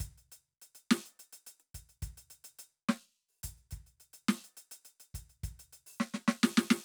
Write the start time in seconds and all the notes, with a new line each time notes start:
0.02 closed hi-hat, kick
0.07 kick
0.11 kick
0.18 closed hi-hat
0.32 closed hi-hat
0.62 closed hi-hat
0.75 closed hi-hat
0.91 snare
1.05 closed hi-hat
1.19 closed hi-hat
1.33 closed hi-hat
1.47 closed hi-hat
1.60 closed hi-hat
1.74 closed hi-hat, kick
1.89 closed hi-hat
2.02 closed hi-hat, kick
2.08 kick
2.17 closed hi-hat
2.30 closed hi-hat
2.44 closed hi-hat
2.59 closed hi-hat
2.89 snare
3.28 open hi-hat
3.43 closed hi-hat, kick
3.49 kick
3.57 closed hi-hat
3.71 closed hi-hat, kick
3.86 closed hi-hat
4.00 closed hi-hat
4.13 closed hi-hat
4.28 snare
4.44 closed hi-hat
4.57 closed hi-hat
4.71 closed hi-hat
4.85 closed hi-hat
5.00 closed hi-hat
5.14 closed hi-hat, kick
5.29 closed hi-hat
5.43 closed hi-hat, kick
5.52 kick
5.59 closed hi-hat
5.73 closed hi-hat
5.86 open hi-hat
6.00 snare
6.14 snare
6.28 snare
6.43 snare
6.57 snare
6.70 snare
6.78 hi-hat pedal